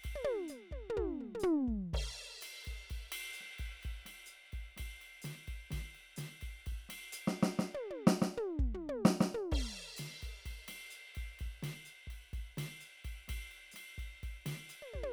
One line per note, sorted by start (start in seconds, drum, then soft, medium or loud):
0.01 kick soft
0.01 hi-hat pedal soft
0.01 ride soft
0.15 high tom medium
0.24 high tom loud
0.48 hi-hat pedal medium
0.48 high tom soft
0.71 kick soft
0.71 high tom soft
0.89 mid tom medium
0.96 kick soft
0.96 mid tom medium
1.20 mid tom soft
1.34 mid tom medium
1.40 floor tom loud
1.40 hi-hat pedal medium
1.68 kick soft
1.93 kick soft
1.93 crash medium
1.99 kick soft
2.41 hi-hat pedal medium
2.41 ride medium
2.64 kick soft
2.64 ride soft
2.90 kick soft
2.90 ride soft
3.12 ride loud
3.33 hi-hat pedal medium
3.33 ride soft
3.41 snare soft
3.58 kick soft
3.58 ride soft
3.80 hi-hat pedal soft
3.80 ride soft
3.85 kick soft
4.06 snare soft
4.06 ride medium
4.26 hi-hat pedal medium
4.26 ride soft
4.52 kick soft
4.52 ride soft
4.77 kick soft
4.77 snare soft
4.77 ride medium
5.01 ride soft
5.22 snare soft
5.22 hi-hat pedal medium
5.22 ride medium
5.47 kick soft
5.47 ride soft
5.70 kick soft
5.70 snare soft
5.70 ride medium
5.78 kick soft
5.94 ride soft
6.16 snare soft
6.16 hi-hat pedal medium
6.16 ride medium
6.41 kick soft
6.41 ride soft
6.66 kick soft
6.66 ride soft
6.72 kick soft
6.89 snare soft
6.89 ride medium
7.12 hi-hat pedal loud
7.12 ride medium
7.27 snare medium
7.43 snare medium
7.59 snare medium
7.59 hi-hat pedal soft
7.74 high tom medium
7.90 high tom medium
8.07 snare loud
8.22 snare medium
8.37 mid tom medium
8.59 kick soft
8.65 kick soft
8.74 floor tom medium
8.89 high tom medium
9.05 snare loud
9.21 snare medium
9.34 mid tom medium
9.52 kick soft
9.52 crash medium
9.96 snare soft
9.96 hi-hat pedal medium
9.96 ride medium
10.22 kick soft
10.22 ride soft
10.46 kick soft
10.46 ride soft
10.50 snare soft
10.68 snare soft
10.68 ride medium
10.90 hi-hat pedal medium
10.90 ride soft
11.15 kick soft
11.15 ride soft
11.38 kick soft
11.38 hi-hat pedal soft
11.38 ride soft
11.46 kick soft
11.62 snare soft
11.62 ride medium
11.85 hi-hat pedal medium
11.85 ride soft
12.07 kick soft
12.07 ride soft
12.33 kick soft
12.33 hi-hat pedal soft
12.33 ride soft
12.38 kick soft
12.57 snare soft
12.57 ride medium
12.81 hi-hat pedal medium
12.81 ride soft
13.04 kick soft
13.04 ride soft
13.28 kick soft
13.28 snare soft
13.28 ride medium
13.35 kick soft
13.51 ride soft
13.71 snare soft
13.71 hi-hat pedal medium
13.76 ride medium
13.98 kick soft
13.98 ride soft
14.23 kick soft
14.23 ride soft
14.46 snare soft
14.46 ride medium
14.69 hi-hat pedal medium
14.69 ride soft
14.82 high tom soft
14.93 kick soft
14.93 high tom soft
15.03 high tom medium